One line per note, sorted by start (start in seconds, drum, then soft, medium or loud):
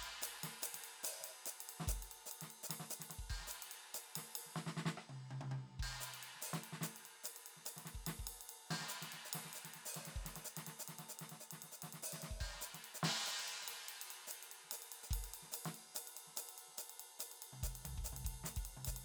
0.01 hi-hat pedal soft
0.01 ride medium
0.22 hi-hat pedal loud
0.22 ride loud
0.44 snare soft
0.44 ride loud
0.63 hi-hat pedal loud
0.63 ride loud
0.74 snare soft
0.74 ride medium
0.84 ride medium
1.04 hi-hat pedal loud
1.04 ride loud
1.21 snare soft
1.21 ride medium
1.46 hi-hat pedal loud
1.46 ride medium
1.61 ride medium
1.70 ride medium
1.80 snare soft
1.88 kick soft
1.88 hi-hat pedal loud
1.88 ride medium
2.03 ride medium
2.12 ride medium
2.27 hi-hat pedal medium
2.32 ride medium
2.42 snare soft
2.42 ride medium
2.51 ride medium
2.64 hi-hat pedal loud
2.70 snare soft
2.70 ride loud
2.80 snare soft
2.91 hi-hat pedal loud
2.91 ride medium
3.00 snare soft
3.00 ride medium
3.10 snare soft
3.10 ride medium
3.19 kick soft
3.30 kick soft
3.30 ride medium
3.41 snare soft
3.48 hi-hat pedal medium
3.52 ride medium
3.63 ride medium
3.72 ride medium
3.95 hi-hat pedal loud
3.95 ride medium
4.16 snare soft
4.16 ride loud
4.36 ride loud
4.46 snare soft
4.56 snare soft
4.67 snare soft
4.77 snare medium
4.86 snare medium
4.98 cross-stick soft
5.10 high tom medium
5.31 high tom medium
5.41 high tom medium
5.52 high tom medium
5.80 kick soft
5.80 ride medium
6.01 hi-hat pedal medium
6.01 ride medium
6.14 ride medium
6.23 ride medium
6.35 snare soft
6.42 hi-hat pedal medium
6.42 ride medium
6.54 snare medium
6.54 ride medium
6.64 ride medium
6.73 snare soft
6.82 snare soft
6.82 hi-hat pedal medium
6.82 ride medium
6.97 ride medium
7.03 hi-hat pedal soft
7.03 ride medium
7.24 hi-hat pedal medium
7.24 ride medium
7.37 ride medium
7.47 ride medium
7.57 snare soft
7.66 hi-hat pedal medium
7.66 ride medium
7.77 snare soft
7.77 ride medium
7.86 snare soft
7.86 ride medium
7.95 kick soft
8.07 snare soft
8.07 ride loud
8.20 kick soft
8.28 ride loud
8.42 ride medium
8.50 ride medium
8.68 snare medium
8.68 hi-hat pedal soft
8.68 ride medium
8.81 snare soft
8.89 hi-hat pedal medium
8.89 ride medium
9.02 snare soft
9.02 ride medium
9.13 snare soft
9.13 ride medium
9.26 hi-hat pedal medium
9.33 snare soft
9.33 ride loud
9.45 snare soft
9.54 hi-hat pedal medium
9.54 ride medium
9.65 snare soft
9.65 ride medium
9.74 snare soft
9.74 ride medium
9.86 hi-hat pedal loud
9.95 snare soft
9.95 ride medium
10.06 snare soft
10.06 ride medium
10.16 kick soft
10.26 snare soft
10.26 ride medium
10.36 snare soft
10.36 ride medium
10.45 hi-hat pedal loud
10.57 snare soft
10.57 ride medium
10.67 snare soft
10.67 ride medium
10.80 hi-hat pedal loud
10.88 snare soft
10.88 ride medium
10.99 snare soft
10.99 ride medium
11.09 hi-hat pedal medium
11.20 snare soft
11.20 ride medium
11.30 snare soft
11.30 ride medium
11.41 hi-hat pedal medium
11.51 snare soft
11.51 ride medium
11.63 snare soft
11.63 ride medium
11.73 hi-hat pedal medium
11.83 snare soft
11.83 ride medium
11.93 snare soft
11.93 ride medium
12.03 hi-hat pedal loud
12.13 snare soft
12.13 ride medium
12.22 snare soft
12.22 ride medium
12.31 kick soft
12.41 kick soft
12.41 ride medium
12.55 snare soft
12.62 hi-hat pedal loud
12.62 ride medium
12.74 snare soft
12.74 ride medium
12.85 ride medium
12.95 hi-hat pedal medium
13.04 snare medium
13.04 ride loud
13.27 hi-hat pedal medium
13.27 ride medium
13.40 ride medium
13.48 ride medium
13.62 hi-hat pedal soft
13.68 ride loud
13.89 ride medium
14.02 ride medium
14.11 ride medium
14.28 hi-hat pedal medium
14.32 ride medium
14.43 ride medium
14.52 ride medium
14.64 snare soft
14.72 hi-hat pedal medium
14.72 ride loud
14.83 ride medium
14.92 ride medium
15.04 open hi-hat medium
15.11 kick soft
15.11 ride loud
15.25 ride medium
15.34 ride medium
15.43 snare soft
15.52 hi-hat pedal medium
15.52 ride loud
15.65 snare soft
15.65 ride medium
15.75 ride medium
15.95 hi-hat pedal medium
15.95 ride loud
16.08 ride medium
16.16 hi-hat pedal soft
16.16 ride medium
16.28 snare soft
16.37 hi-hat pedal medium
16.37 ride loud
16.49 ride medium
16.58 ride medium
16.69 snare soft
16.78 hi-hat pedal medium
16.78 ride medium
16.90 ride medium
17.00 ride medium
17.20 hi-hat pedal medium
17.20 ride loud
17.32 ride medium
17.43 ride medium
17.53 high tom soft
17.63 kick soft
17.63 hi-hat pedal loud
17.63 ride medium
17.76 ride medium
17.83 floor tom medium
17.83 hi-hat pedal soft
17.83 ride medium
17.98 kick soft
18.05 hi-hat pedal medium
18.05 ride medium
18.13 high tom soft
18.17 ride medium
18.24 kick soft
18.24 hi-hat pedal soft
18.24 ride medium
18.44 snare soft
18.44 hi-hat pedal medium
18.44 ride medium
18.57 kick soft
18.57 ride medium
18.66 ride medium
18.77 high tom soft
18.85 kick soft
18.85 hi-hat pedal medium
18.85 ride medium
18.97 ride medium